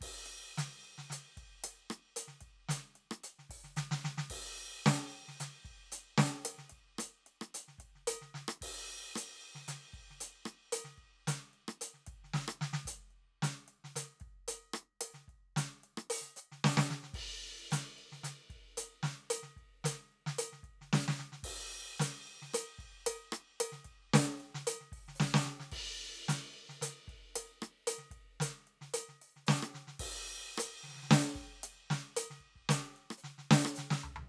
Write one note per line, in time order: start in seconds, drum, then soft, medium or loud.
0.01 kick soft
0.01 crash medium
0.26 closed hi-hat soft
0.58 closed hi-hat medium
0.58 snare medium
0.84 closed hi-hat soft
0.98 snare soft
1.10 closed hi-hat medium
1.10 snare medium
1.37 kick soft
1.37 closed hi-hat soft
1.53 snare soft
1.64 closed hi-hat loud
1.90 cross-stick medium
2.16 closed hi-hat loud
2.28 snare soft
2.41 kick soft
2.41 closed hi-hat soft
2.69 closed hi-hat loud
2.69 snare medium
2.95 closed hi-hat soft
3.11 cross-stick medium
3.24 closed hi-hat medium
3.39 snare soft
3.50 kick soft
3.50 open hi-hat medium
3.64 snare soft
3.76 snare medium
3.76 hi-hat pedal medium
3.91 snare medium
4.04 snare medium
4.18 snare medium
4.30 kick soft
4.30 crash medium
4.56 closed hi-hat soft
4.86 closed hi-hat medium
4.86 snare loud
5.12 closed hi-hat soft
5.28 snare soft
5.40 closed hi-hat medium
5.40 snare medium
5.65 kick soft
5.65 closed hi-hat soft
5.92 closed hi-hat medium
6.18 snare loud
6.45 closed hi-hat loud
6.58 snare soft
6.70 kick soft
6.70 closed hi-hat soft
6.98 closed hi-hat loud
6.98 cross-stick medium
7.26 closed hi-hat soft
7.41 cross-stick medium
7.54 closed hi-hat medium
7.68 snare soft
7.78 kick soft
7.78 closed hi-hat soft
7.95 snare soft
8.07 closed hi-hat loud
8.21 snare soft
8.34 snare soft
8.48 cross-stick medium
8.61 kick soft
8.61 crash medium
8.89 closed hi-hat soft
9.16 closed hi-hat loud
9.16 cross-stick medium
9.41 closed hi-hat soft
9.55 snare soft
9.68 closed hi-hat medium
9.68 snare medium
9.93 kick soft
9.93 closed hi-hat soft
10.10 snare soft
10.20 closed hi-hat medium
10.45 cross-stick medium
10.72 closed hi-hat loud
10.84 snare soft
10.98 kick soft
10.98 closed hi-hat soft
11.27 closed hi-hat loud
11.27 snare medium
11.53 closed hi-hat soft
11.68 cross-stick medium
11.81 closed hi-hat loud
11.94 snare soft
12.07 kick soft
12.07 closed hi-hat soft
12.24 snare soft
12.34 snare medium
12.48 cross-stick medium
12.61 snare medium
12.73 snare medium
12.85 closed hi-hat medium
12.85 kick soft
13.11 closed hi-hat soft
13.42 closed hi-hat medium
13.42 snare medium
13.68 closed hi-hat soft
13.84 snare soft
13.96 closed hi-hat loud
13.96 snare medium
14.20 kick soft
14.20 closed hi-hat soft
14.48 closed hi-hat loud
14.74 cross-stick medium
15.01 closed hi-hat loud
15.14 snare soft
15.28 kick soft
15.28 closed hi-hat soft
15.56 closed hi-hat medium
15.56 snare medium
15.83 closed hi-hat soft
15.97 cross-stick medium
16.10 open hi-hat loud
16.21 snare soft
16.36 hi-hat pedal medium
16.52 snare soft
16.64 snare loud
16.77 snare loud
16.90 snare medium
17.03 snare soft
17.14 kick medium
17.14 ride medium
17.71 closed hi-hat loud
17.71 snare medium
17.71 hi-hat pedal medium
17.98 closed hi-hat soft
18.12 snare soft
18.24 closed hi-hat medium
18.24 snare medium
18.50 kick soft
18.50 closed hi-hat soft
18.77 closed hi-hat loud
19.03 snare medium
19.30 closed hi-hat loud
19.43 snare soft
19.56 kick soft
19.56 closed hi-hat soft
19.84 closed hi-hat loud
19.84 snare medium
20.12 closed hi-hat soft
20.26 snare medium
20.39 closed hi-hat loud
20.52 snare soft
20.63 kick soft
20.63 closed hi-hat soft
20.81 snare soft
20.93 snare loud
21.08 snare medium
21.19 snare soft
21.32 snare soft
21.43 kick soft
21.43 crash medium
21.70 closed hi-hat soft
22.00 closed hi-hat loud
22.00 snare medium
22.27 closed hi-hat soft
22.42 snare soft
22.54 closed hi-hat loud
22.54 cross-stick medium
22.79 kick soft
22.79 closed hi-hat soft
23.06 closed hi-hat loud
23.32 cross-stick medium
23.60 closed hi-hat loud
23.72 snare soft
23.85 kick soft
23.85 closed hi-hat soft
24.14 closed hi-hat loud
24.14 snare loud
24.40 closed hi-hat soft
24.55 snare medium
24.67 closed hi-hat loud
24.80 snare soft
24.92 kick soft
24.92 open hi-hat soft
25.08 snare soft
25.15 hi-hat pedal soft
25.20 snare loud
25.34 snare loud
25.45 snare soft
25.60 snare soft
25.72 kick soft
25.72 ride loud
26.28 closed hi-hat medium
26.28 snare medium
26.54 closed hi-hat soft
26.69 snare soft
26.81 closed hi-hat loud
26.81 snare medium
27.08 kick soft
27.08 closed hi-hat soft
27.36 closed hi-hat loud
27.62 cross-stick medium
27.87 closed hi-hat loud
27.98 snare soft
28.11 kick soft
28.11 closed hi-hat soft
28.40 closed hi-hat loud
28.40 snare medium
28.67 closed hi-hat soft
28.81 snare soft
28.94 closed hi-hat loud
29.08 snare soft
29.22 open hi-hat soft
29.36 snare soft
29.47 snare loud
29.47 hi-hat pedal medium
29.62 cross-stick medium
29.74 snare soft
29.87 snare soft
29.99 kick soft
29.99 crash medium
30.28 closed hi-hat soft
30.58 closed hi-hat loud
30.58 cross-stick medium
30.83 snare soft
30.88 snare soft
30.93 snare soft
30.96 snare soft
31.08 snare soft
31.11 snare loud
31.35 kick soft
31.63 closed hi-hat medium
31.90 snare medium
32.17 closed hi-hat loud
32.30 snare soft
32.40 kick soft
32.56 kick soft
32.69 closed hi-hat loud
32.69 snare medium
32.96 closed hi-hat soft
33.10 cross-stick medium
33.17 hi-hat pedal soft
33.24 snare soft
33.38 snare soft
33.51 snare loud
33.65 cross-stick medium
33.75 snare medium
33.75 hi-hat pedal medium
33.90 snare medium
34.03 floor tom medium
34.16 floor tom medium